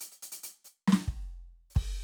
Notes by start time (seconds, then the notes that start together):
0.01 closed hi-hat
0.12 closed hi-hat
0.23 closed hi-hat
0.32 closed hi-hat
0.44 closed hi-hat
0.65 hi-hat pedal
0.88 snare
0.92 snare
1.08 kick
1.70 hi-hat pedal
1.75 kick, crash
1.90 closed hi-hat